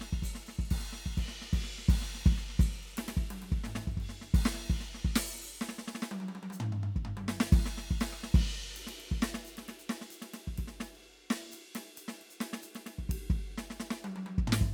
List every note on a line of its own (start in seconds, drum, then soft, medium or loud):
0.01 snare medium
0.13 kick medium
0.23 open hi-hat medium
0.23 kick medium
0.35 snare soft
0.48 snare soft
0.59 kick medium
0.71 kick medium
0.71 crash medium
0.80 snare soft
0.92 kick soft
0.92 snare soft
1.06 kick medium
1.17 kick medium
1.17 crash medium
1.28 snare soft
1.42 snare soft
1.53 kick medium
1.53 ride medium
1.64 snare soft
1.78 snare soft
1.89 kick loud
1.89 crash medium
2.02 snare soft
2.15 snare soft
2.25 kick loud
2.25 crash medium
2.38 snare soft
2.50 snare soft
2.59 open hi-hat medium
2.59 kick loud
2.75 snare soft
2.97 snare medium
2.97 ride medium
3.08 snare medium
3.08 ride medium
3.17 kick medium
3.31 high tom medium
3.31 ride medium
3.42 high tom medium
3.42 ride soft
3.52 kick medium
3.64 snare medium
3.64 floor tom medium
3.75 snare medium
3.75 floor tom medium
3.87 kick medium
3.97 kick medium
3.97 ride medium
4.09 snare soft
4.21 snare soft
4.34 kick loud
4.34 crash medium
4.45 snare loud
4.54 snare soft
4.60 snare soft
4.70 kick medium
4.70 crash medium
4.80 snare soft
4.94 snare soft
5.05 kick medium
5.16 open hi-hat loud
5.16 snare loud
5.42 ride medium
5.61 snare medium
5.69 snare medium
5.78 snare medium
5.88 snare medium
5.95 snare medium
6.02 snare medium
6.06 hi-hat pedal soft
6.11 high tom loud
6.20 high tom medium
6.29 high tom medium
6.35 high tom medium
6.43 high tom medium
6.50 hi-hat pedal medium
6.50 high tom medium
6.60 floor tom loud
6.72 floor tom medium
6.83 floor tom medium
6.96 kick medium
7.05 floor tom medium
7.17 high tom medium
7.28 snare medium
7.40 snare loud
7.52 kick loud
7.52 crash medium
7.66 snare medium
7.78 snare medium
7.91 kick medium
8.01 snare loud
8.01 crash medium
8.13 cross-stick medium
8.23 snare medium
8.34 kick loud
8.34 crash loud
8.74 hi-hat pedal soft
8.74 ride medium
8.87 snare medium
8.87 ride medium
9.00 ride soft
9.12 kick medium
9.18 hi-hat pedal soft
9.22 snare loud
9.22 ride soft
9.34 snare medium
9.45 hi-hat pedal medium
9.45 ride soft
9.57 snare medium
9.57 ride medium
9.68 snare medium
9.68 ride medium
9.79 hi-hat pedal medium
9.89 snare medium
9.89 ride medium
10.01 snare soft
10.11 hi-hat pedal medium
10.11 ride medium
10.22 snare medium
10.22 ride medium
10.34 snare medium
10.34 ride medium
10.48 kick soft
10.58 kick medium
10.58 ride medium
10.68 snare soft
10.80 snare medium
10.85 ride soft
10.95 ride soft
11.30 snare loud
11.30 ride medium
11.51 hi-hat pedal medium
11.51 ride medium
11.75 snare medium
11.75 ride medium
11.97 hi-hat pedal medium
11.97 ride medium
12.08 snare medium
12.08 ride soft
12.21 ride soft
12.30 hi-hat pedal medium
12.41 snare medium
12.41 ride medium
12.53 snare medium
12.62 hi-hat pedal medium
12.62 ride medium
12.75 snare medium
12.75 ride medium
12.86 snare medium
12.86 ride medium
12.99 kick soft
13.09 kick medium
13.09 ride loud
13.30 kick medium
13.30 ride soft
13.58 snare medium
13.70 snare medium
13.80 snare medium
13.91 snare medium
14.04 high tom loud
14.16 high tom medium
14.26 high tom medium
14.38 kick medium
14.47 floor tom loud
14.52 snare loud
14.61 kick medium